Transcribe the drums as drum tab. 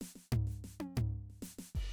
RD |-----------x|
HH |p--p-xp--p--|
SD |oo-oo---ooo-|
T1 |-----o------|
FT |--o---o-----|
BD |-----------o|